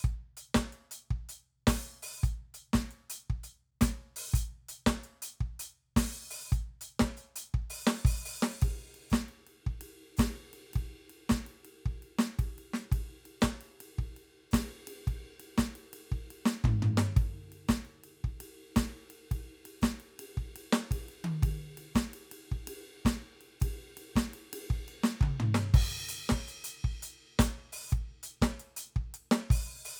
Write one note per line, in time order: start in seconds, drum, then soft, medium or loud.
0.01 kick medium
0.01 hi-hat pedal soft
0.37 closed hi-hat medium
0.54 kick medium
0.54 snare loud
0.72 closed hi-hat soft
0.91 closed hi-hat loud
1.10 kick medium
1.29 closed hi-hat medium
1.67 open hi-hat loud
1.67 kick medium
1.67 snare loud
2.02 open hi-hat loud
2.21 closed hi-hat medium
2.21 kick medium
2.21 hi-hat pedal soft
2.54 closed hi-hat medium
2.73 kick medium
2.73 snare loud
2.91 closed hi-hat soft
3.10 closed hi-hat loud
3.30 kick medium
3.43 closed hi-hat medium
3.81 closed hi-hat loud
3.81 kick medium
3.81 snare loud
4.16 open hi-hat loud
4.32 closed hi-hat loud
4.32 kick medium
4.32 hi-hat pedal soft
4.69 closed hi-hat loud
4.86 kick medium
4.86 snare loud
5.04 closed hi-hat medium
5.22 closed hi-hat loud
5.41 kick medium
5.59 closed hi-hat loud
5.96 open hi-hat loud
5.96 kick medium
5.96 snare loud
6.30 open hi-hat loud
6.50 closed hi-hat medium
6.50 kick medium
6.50 hi-hat pedal medium
6.81 closed hi-hat loud
6.99 kick medium
6.99 snare loud
7.17 closed hi-hat medium
7.36 closed hi-hat loud
7.54 kick medium
7.70 open hi-hat loud
7.87 snare loud
8.05 open hi-hat loud
8.05 kick loud
8.25 open hi-hat loud
8.42 snare loud
8.62 kick loud
8.62 ride medium
8.94 ride soft
9.10 kick medium
9.10 snare loud
9.10 hi-hat pedal medium
9.28 ride soft
9.47 ride soft
9.66 kick medium
9.81 ride medium
10.17 kick medium
10.17 snare loud
10.17 hi-hat pedal medium
10.17 ride loud
10.53 ride medium
10.73 kick medium
10.73 ride medium
11.00 ride soft
11.10 ride medium
11.29 kick medium
11.29 snare loud
11.29 hi-hat pedal medium
11.47 ride medium
11.65 ride medium
11.81 ride soft
11.86 kick medium
11.90 ride soft
12.02 ride soft
12.19 snare loud
12.39 kick medium
12.39 ride medium
12.58 ride medium
12.74 snare medium
12.92 kick medium
12.92 ride medium
13.25 ride medium
13.41 kick medium
13.41 snare loud
13.41 hi-hat pedal soft
13.61 ride medium
13.80 ride medium
13.98 kick medium
14.03 ride soft
14.17 ride soft
14.51 kick medium
14.51 snare loud
14.51 hi-hat pedal medium
14.51 ride loud
14.87 ride medium
15.07 kick medium
15.07 ride medium
15.40 ride medium
15.57 kick medium
15.57 snare loud
15.57 hi-hat pedal medium
15.75 ride medium
15.93 ride medium
16.12 kick medium
16.31 ride medium
16.46 snare loud
16.64 kick medium
16.64 floor tom loud
16.82 floor tom loud
16.97 snare loud
17.16 kick loud
17.16 ride medium
17.51 ride soft
17.68 kick medium
17.68 snare loud
17.68 hi-hat pedal medium
17.85 ride soft
18.04 ride medium
18.24 kick medium
18.24 crash soft
18.32 ride soft
18.40 ride medium
18.76 kick medium
18.76 snare loud
18.76 hi-hat pedal medium
18.76 ride medium
19.10 ride medium
19.28 kick medium
19.28 ride soft
19.32 ride medium
19.65 ride medium
19.82 kick medium
19.82 snare loud
19.82 hi-hat pedal medium
20.00 ride soft
20.19 ride medium
20.37 kick medium
20.56 ride medium
20.73 snare loud
20.91 kick medium
20.91 ride loud
21.08 ride medium
21.24 high tom loud
21.43 kick loud
21.43 ride loud
21.71 ride soft
21.77 ride medium
21.95 kick medium
21.95 snare loud
21.95 hi-hat pedal medium
22.13 ride medium
22.32 ride medium
22.48 kick medium
22.48 ride soft
22.67 ride loud
22.95 ride soft
23.05 kick medium
23.05 snare loud
23.05 ride medium
23.41 ride soft
23.60 kick medium
23.60 hi-hat pedal soft
23.60 ride loud
23.97 ride medium
24.16 kick medium
24.16 snare loud
24.33 ride medium
24.53 ride loud
24.70 kick medium
24.88 ride bell medium
25.04 snare loud
25.21 kick loud
25.21 mid tom loud
25.40 floor tom loud
25.54 snare loud
25.74 kick loud
25.74 hi-hat pedal medium
25.74 crash loud
26.08 closed hi-hat loud
26.29 kick medium
26.29 snare loud
26.48 closed hi-hat medium
26.64 closed hi-hat loud
26.84 kick medium
27.02 closed hi-hat loud
27.39 closed hi-hat loud
27.39 kick medium
27.39 snare loud
27.72 open hi-hat loud
27.89 kick medium
27.89 hi-hat pedal medium
28.23 closed hi-hat loud
28.42 kick medium
28.42 snare loud
28.59 closed hi-hat medium
28.76 closed hi-hat loud
28.96 kick medium
29.14 closed hi-hat medium
29.31 snare loud
29.50 open hi-hat loud
29.50 kick loud
29.85 open hi-hat loud